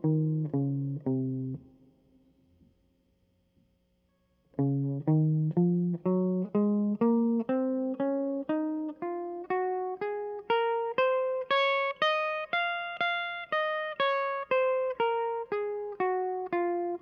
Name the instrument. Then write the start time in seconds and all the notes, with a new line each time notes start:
electric guitar
0.05 D#3
0.55 C#3
1.07 C3
4.60 C#3
5.08 D#3
5.57 F3
6.06 F#3
6.55 G#3
7.02 A#3
7.49 C4
8.00 C#4
8.50 D#4
9.02 F4
9.50 F#4
10.01 G#4
10.50 A#4
10.98 C5
11.51 C#5
12.02 D#5
12.53 F5
13.01 F5
13.52 D#5
14.00 C#5
14.51 C5
15.00 A#4
15.52 G#4
16.00 F#4
16.53 F4